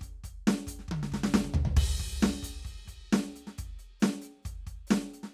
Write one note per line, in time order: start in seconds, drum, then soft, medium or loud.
0.01 closed hi-hat medium
0.01 kick soft
0.24 closed hi-hat medium
0.24 kick soft
0.47 snare loud
0.67 closed hi-hat loud
0.67 kick soft
0.79 snare soft
0.88 kick medium
0.88 high tom loud
1.03 snare medium
1.12 kick soft
1.12 snare medium
1.24 snare loud
1.34 kick medium
1.34 snare loud
1.44 high tom medium
1.54 kick medium
1.54 floor tom loud
1.65 floor tom loud
1.77 kick loud
1.77 crash loud
1.97 open hi-hat medium
1.97 kick medium
2.19 snare loud
2.19 hi-hat pedal medium
2.43 closed hi-hat loud
2.43 kick medium
2.65 closed hi-hat soft
2.65 kick soft
2.85 closed hi-hat medium
2.85 kick soft
2.85 snare soft
3.13 snare loud
3.36 closed hi-hat medium
3.47 snare soft
3.58 closed hi-hat medium
3.58 kick medium
3.79 closed hi-hat soft
4.00 snare loud
4.00 hi-hat pedal soft
4.22 closed hi-hat soft
4.22 hi-hat pedal medium
4.42 closed hi-hat medium
4.42 kick medium
4.42 hi-hat pedal soft
4.67 closed hi-hat soft
4.67 kick soft
4.87 snare loud
4.87 hi-hat pedal medium
5.14 closed hi-hat soft
5.23 snare soft